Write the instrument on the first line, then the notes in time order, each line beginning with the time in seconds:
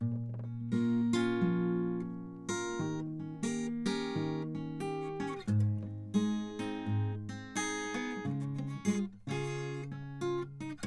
acoustic guitar
0.02 A#2 A#3
0.46 C#4
0.73 A#3 C4 F4 A#4
1.14 C#4 F4
1.43 F3
2.49 F4 A#4
2.81 D#3 G4
3.21 C#4
3.44 A#3 G4 A#4
3.87 C#4 G4 A#4
4.17 D#3
4.56 C#4
4.81 G4
5.21 C#4
5.49 G#2
5.88 G#3 C4
6.15 G#3 D#4 G#4
6.60 C4 D#4
6.87 G#2
7.30 C4
7.56 D#4 G#4
7.95 B3
8.26 C#3
8.36 G#3
8.59 C#4
8.86 G#3 F4 G#4
9.28 C#3 C#4 F4 G#4
9.93 C#4
10.22 F4
10.61 D#4